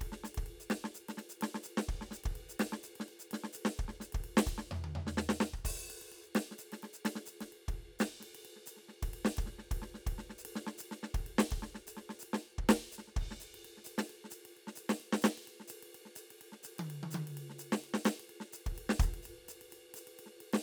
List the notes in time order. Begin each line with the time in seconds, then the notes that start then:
0.01 kick, ride
0.12 snare
0.24 snare, hi-hat pedal
0.35 kick, ride
0.46 ride
0.60 hi-hat pedal
0.70 snare, ride
0.84 snare
0.94 hi-hat pedal, ride
1.09 snare, ride
1.17 snare, ride
1.29 hi-hat pedal
1.41 snare, ride
1.55 snare
1.63 hi-hat pedal, ride
1.77 snare
1.89 kick, ride
2.01 snare
2.11 snare, hi-hat pedal
2.24 kick, ride
2.36 ride
2.49 hi-hat pedal
2.60 snare, ride
2.72 snare
2.83 hi-hat pedal, ride
2.96 ride
3.00 snare
3.08 ride
3.19 hi-hat pedal
3.31 snare, ride
3.44 snare
3.53 hi-hat pedal, ride
3.65 snare
3.78 kick, ride
3.88 snare
4.00 snare, hi-hat pedal
4.13 kick, ride
4.24 ride
4.37 snare
4.46 kick, hi-hat pedal, ride
4.58 snare
4.71 floor tom
4.84 high tom
4.95 floor tom
5.07 snare
5.17 snare
5.29 snare
5.40 snare
5.54 kick
5.65 open hi-hat, kick, ride
5.90 ride
6.02 ride
6.12 ride
6.24 hi-hat pedal
6.35 snare, ride
6.51 snare
6.58 hi-hat pedal, ride
6.72 snare, ride
6.83 snare, ride
6.93 hi-hat pedal
7.05 snare, ride
7.16 snare
7.26 hi-hat pedal, ride
7.41 kick, snare, ride
7.52 ride
7.68 kick, ride
7.99 snare, hi-hat pedal, ride
8.20 snare, ride
8.35 ride
8.40 hi-hat pedal
8.45 ride
8.56 snare
8.66 hi-hat pedal, ride
8.77 snare
8.89 snare
9.03 kick, ride
9.14 ride
9.25 snare
9.36 kick, hi-hat pedal, ride
9.46 snare
9.59 snare
9.71 kick, ride
9.82 snare
9.94 snare
10.07 kick, ride
10.18 snare
10.30 snare
10.38 hi-hat pedal
10.45 ride
10.56 snare
10.67 snare
10.78 hi-hat pedal, ride
10.91 snare
11.03 snare
11.14 kick, ride
11.27 ride
11.39 snare
11.51 kick, ride
11.62 snare
11.75 snare
11.87 hi-hat pedal, ride
11.97 snare
12.09 snare
12.19 hi-hat pedal, ride
12.33 snare
12.58 kick
12.69 snare, ride
12.92 hi-hat pedal
12.98 snare
13.08 snare
13.16 kick, ride
13.31 snare
13.40 hi-hat pedal, ride
13.54 ride
13.65 ride
13.77 snare
13.84 hi-hat pedal, ride
13.98 snare, ride
14.05 hi-hat pedal
14.10 ride
14.24 snare
14.30 hi-hat pedal, ride
14.45 ride
14.51 hi-hat pedal
14.57 ride
14.67 snare
14.75 hi-hat pedal, ride
14.89 snare, ride
15.00 ride
15.13 snare
15.21 snare, hi-hat pedal, ride
15.38 ride
15.42 hi-hat pedal
15.48 ride
15.60 snare
15.68 hi-hat pedal, ride
15.83 ride
15.90 hi-hat pedal
15.95 ride
16.05 snare
16.16 hi-hat pedal, ride
16.31 ride
16.38 hi-hat pedal, ride
16.52 snare
16.63 hi-hat pedal, ride
16.79 high tom, ride
16.84 hi-hat pedal
16.90 ride
17.03 high tom
17.11 hi-hat pedal, high tom, ride
17.27 ride
17.33 hi-hat pedal
17.37 ride
17.50 snare
17.59 hi-hat pedal, ride
17.72 snare, ride
17.81 hi-hat pedal, ride
17.94 snare
18.05 snare, hi-hat pedal, ride
18.20 ride
18.30 ride
18.40 snare
18.53 hi-hat pedal, ride
18.66 kick, ride
18.75 hi-hat pedal, ride
18.89 snare
19.00 kick, hi-hat pedal, ride
19.14 ride
19.23 hi-hat pedal, ride
19.48 hi-hat pedal, ride
19.61 ride
19.70 hi-hat pedal, ride
19.94 hi-hat pedal, ride
20.07 ride
20.17 hi-hat pedal, ride
20.26 snare
20.41 ride
20.53 snare, ride